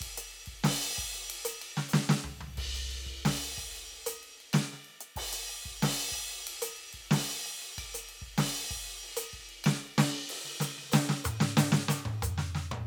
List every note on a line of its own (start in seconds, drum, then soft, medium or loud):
0.01 kick medium
0.01 ride loud
0.18 closed hi-hat loud
0.31 ride soft
0.46 kick soft
0.46 ride medium
0.64 snare loud
0.64 crash loud
0.99 kick medium
0.99 ride bell medium
1.15 closed hi-hat medium
1.30 ride loud
1.45 closed hi-hat loud
1.62 ride bell loud
1.77 snare medium
1.89 hi-hat pedal medium
1.94 snare loud
2.09 snare loud
2.24 floor tom medium
2.41 floor tom medium
2.58 kick medium
2.58 ride loud
2.75 closed hi-hat medium
2.91 ride soft
3.06 kick soft
3.06 ride bell soft
3.25 snare loud
3.25 crash loud
3.58 kick medium
3.58 ride bell medium
3.75 closed hi-hat medium
3.92 ride soft
4.07 closed hi-hat loud
4.23 ride medium
4.41 ride bell soft
4.53 snare loud
4.53 ride bell loud
4.73 snare soft
4.85 ride soft
5.01 closed hi-hat medium
5.16 kick medium
5.16 crash loud
5.33 closed hi-hat medium
5.49 ride bell medium
5.64 kick soft
5.64 floor tom soft
5.64 ride soft
5.83 snare loud
5.83 crash loud
6.12 kick soft
6.12 ride medium
6.16 cross-stick soft
6.16 floor tom soft
6.31 closed hi-hat soft
6.47 ride loud
6.62 closed hi-hat loud
6.77 ride soft
6.93 kick soft
6.93 ride medium
7.11 snare loud
7.11 crash loud
7.47 ride soft
7.62 closed hi-hat soft
7.78 kick medium
7.78 ride bell loud
7.95 closed hi-hat loud
8.09 ride medium
8.22 kick soft
8.38 snare loud
8.38 crash loud
8.71 kick medium
8.71 ride medium
8.87 closed hi-hat soft
9.03 ride medium
9.17 closed hi-hat loud
9.33 kick soft
9.33 ride soft
9.49 ride soft
9.65 snare loud
9.65 ride bell loud
9.98 snare loud
9.98 ride loud
10.29 crash medium
10.45 snare soft
10.60 snare medium
10.60 hi-hat pedal loud
10.78 snare soft
10.84 snare soft
10.89 snare soft
10.89 hi-hat pedal loud
10.94 snare loud
11.09 snare loud
11.25 hi-hat pedal loud
11.25 high tom loud
11.41 snare loud
11.57 snare loud
11.57 hi-hat pedal loud
11.72 snare loud
11.89 snare loud
11.89 hi-hat pedal loud
12.06 high tom loud
12.23 hi-hat pedal loud
12.23 mid tom loud
12.38 snare medium
12.55 snare medium
12.72 high tom loud